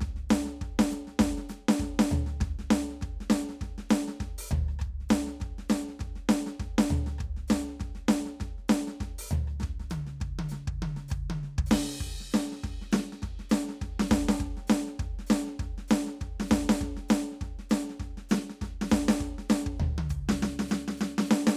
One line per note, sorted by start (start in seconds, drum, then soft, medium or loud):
0.01 kick medium
0.01 snare medium
0.16 snare soft
0.30 snare loud
0.30 hi-hat pedal medium
0.46 snare soft
0.62 kick medium
0.62 snare soft
0.79 snare loud
0.90 snare soft
0.90 hi-hat pedal medium
1.07 snare soft
1.20 kick medium
1.20 snare loud
1.38 snare soft
1.49 snare soft
1.49 hi-hat pedal medium
1.69 snare loud
1.80 kick medium
1.80 snare soft
2.00 snare loud
2.10 floor tom loud
2.10 hi-hat pedal medium
2.27 snare soft
2.41 kick loud
2.41 snare medium
2.59 snare soft
2.64 kick soft
2.71 snare loud
2.71 hi-hat pedal medium
2.76 kick soft
2.90 snare soft
3.02 kick medium
3.02 snare soft
3.21 snare soft
3.30 snare loud
3.30 hi-hat pedal medium
3.49 snare soft
3.61 kick medium
3.61 snare soft
3.78 snare soft
3.90 snare loud
3.90 hi-hat pedal medium
4.08 snare medium
4.21 kick medium
4.21 snare medium
4.39 open hi-hat loud
4.49 kick medium
4.49 floor tom loud
4.49 hi-hat pedal medium
4.69 cross-stick soft
4.79 kick medium
4.79 cross-stick medium
5.01 snare soft
5.09 snare loud
5.09 hi-hat pedal medium
5.27 snare soft
5.41 kick medium
5.41 snare soft
5.59 snare soft
5.69 snare loud
5.69 hi-hat pedal medium
5.89 snare soft
6.00 kick medium
6.00 snare soft
6.16 snare soft
6.29 snare loud
6.29 hi-hat pedal medium
6.47 snare medium
6.60 kick medium
6.60 snare soft
6.79 snare loud
6.88 floor tom loud
6.88 hi-hat pedal medium
7.07 snare soft
7.19 kick medium
7.19 cross-stick medium
7.37 snare soft
7.48 snare loud
7.48 hi-hat pedal medium
7.68 snare soft
7.80 kick medium
7.80 snare soft
7.95 snare soft
8.09 snare loud
8.09 hi-hat pedal medium
8.26 snare soft
8.40 kick medium
8.40 snare soft
8.59 snare soft
8.69 snare loud
8.69 hi-hat pedal medium
8.88 snare soft
9.01 kick medium
9.01 snare medium
9.19 open hi-hat loud
9.30 floor tom loud
9.30 hi-hat pedal medium
9.48 cross-stick soft
9.60 kick medium
9.60 snare medium
9.80 snare soft
9.90 hi-hat pedal medium
9.90 high tom loud
10.07 snare soft
10.21 kick medium
10.21 snare soft
10.39 high tom loud
10.49 snare soft
10.49 hi-hat pedal medium
10.68 kick medium
10.83 high tom loud
10.97 snare soft
11.09 kick loud
11.09 cross-stick soft
11.09 hi-hat pedal medium
11.30 high tom loud
11.44 snare soft
11.59 kick loud
11.67 hi-hat pedal medium
11.71 snare loud
11.71 crash loud
12.01 kick medium
12.21 snare soft
12.32 snare loud
12.32 hi-hat pedal medium
12.52 snare soft
12.64 kick medium
12.64 snare soft
12.82 snare soft
12.92 snare loud
12.92 hi-hat pedal medium
13.13 snare soft
13.22 kick medium
13.22 snare soft
13.39 snare soft
13.50 snare loud
13.50 hi-hat pedal medium
13.69 snare soft
13.82 kick medium
13.82 snare soft
14.00 snare loud
14.09 kick medium
14.09 snare loud
14.09 hi-hat pedal medium
14.29 snare loud
14.40 kick medium
14.40 snare soft
14.57 snare soft
14.68 snare loud
14.68 hi-hat pedal medium
14.87 snare soft
15.00 kick medium
15.00 snare soft
15.19 snare soft
15.27 snare loud
15.27 hi-hat pedal medium
15.47 snare soft
15.60 kick medium
15.60 snare soft
15.78 snare soft
15.88 snare loud
15.88 hi-hat pedal medium
16.07 snare soft
16.21 kick medium
16.21 snare soft
16.40 snare medium
16.48 kick medium
16.48 snare loud
16.48 hi-hat pedal medium
16.70 snare loud
16.81 kick medium
16.81 snare soft
16.97 snare soft
17.09 snare loud
17.09 hi-hat pedal medium
17.32 snare soft
17.41 kick medium
17.41 snare soft
17.59 snare soft
17.70 snare loud
17.70 hi-hat pedal medium
17.90 snare soft
18.00 kick medium
18.00 snare soft
18.18 snare soft
18.29 snare loud
18.29 hi-hat pedal medium
18.37 kick soft
18.50 snare soft
18.62 kick medium
18.62 snare medium
18.82 snare medium
18.89 kick medium
18.89 snare loud
18.89 hi-hat pedal medium
19.09 snare loud
19.21 kick medium
19.21 snare soft
19.39 snare soft
19.50 snare loud
19.50 hi-hat pedal medium
19.67 kick medium
19.80 floor tom loud
19.98 high tom loud
20.10 kick medium
20.10 hi-hat pedal medium
20.29 snare loud
20.43 snare loud
20.60 snare medium
20.68 snare loud
20.68 hi-hat pedal medium
20.88 snare medium
20.98 snare loud
20.98 hi-hat pedal medium
21.19 snare loud
21.25 kick soft
21.25 hi-hat pedal medium
21.31 snare loud
21.47 snare loud